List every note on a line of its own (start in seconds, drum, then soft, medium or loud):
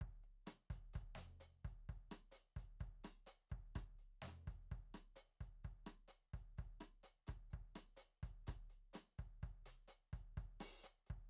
0.01 kick soft
0.24 closed hi-hat soft
0.46 open hi-hat soft
0.46 cross-stick soft
0.46 snare soft
0.46 hi-hat pedal medium
0.70 closed hi-hat soft
0.70 kick soft
0.75 kick soft
0.93 closed hi-hat soft
0.93 kick soft
1.01 kick soft
1.15 closed hi-hat soft
1.15 snare soft
1.15 mid tom soft
1.40 closed hi-hat soft
1.40 hi-hat pedal medium
1.64 closed hi-hat soft
1.64 kick soft
1.89 closed hi-hat soft
1.89 kick soft
2.11 closed hi-hat soft
2.11 cross-stick soft
2.31 closed hi-hat soft
2.31 hi-hat pedal medium
2.56 closed hi-hat soft
2.56 kick soft
2.80 closed hi-hat soft
2.80 kick soft
3.04 open hi-hat medium
3.04 cross-stick soft
3.26 closed hi-hat soft
3.26 hi-hat pedal medium
3.50 closed hi-hat soft
3.50 kick soft
3.75 open hi-hat soft
3.75 kick soft
3.75 cross-stick soft
3.75 snare soft
3.99 closed hi-hat soft
4.22 closed hi-hat soft
4.22 snare soft
4.22 hi-hat pedal medium
4.22 mid tom soft
4.28 cross-stick soft
4.47 closed hi-hat soft
4.47 kick soft
4.71 closed hi-hat soft
4.71 kick soft
4.94 closed hi-hat soft
4.94 cross-stick soft
5.16 closed hi-hat soft
5.16 hi-hat pedal medium
5.40 closed hi-hat soft
5.40 kick soft
5.64 closed hi-hat soft
5.64 kick soft
5.86 closed hi-hat soft
5.86 cross-stick soft
5.86 snare soft
6.08 closed hi-hat soft
6.08 hi-hat pedal medium
6.33 closed hi-hat soft
6.33 kick soft
6.58 closed hi-hat soft
6.58 kick soft
6.80 closed hi-hat soft
6.80 cross-stick soft
7.03 closed hi-hat soft
7.03 hi-hat pedal medium
7.27 closed hi-hat soft
7.27 kick soft
7.27 cross-stick soft
7.50 open hi-hat soft
7.50 kick soft
7.75 closed hi-hat soft
7.75 cross-stick soft
7.96 closed hi-hat soft
7.96 hi-hat pedal medium
8.23 closed hi-hat soft
8.23 kick soft
8.47 closed hi-hat soft
8.47 kick soft
8.47 cross-stick soft
8.70 closed hi-hat soft
8.93 closed hi-hat soft
8.93 cross-stick soft
8.93 hi-hat pedal medium
9.18 closed hi-hat soft
9.18 kick soft
9.42 closed hi-hat soft
9.42 kick soft
9.66 closed hi-hat medium
9.66 snare soft
9.88 closed hi-hat soft
9.88 hi-hat pedal medium
10.13 closed hi-hat soft
10.13 kick soft
10.37 closed hi-hat soft
10.37 kick soft
10.60 open hi-hat medium
10.60 cross-stick soft
10.60 snare soft
10.83 hi-hat pedal medium
11.06 closed hi-hat soft
11.06 kick soft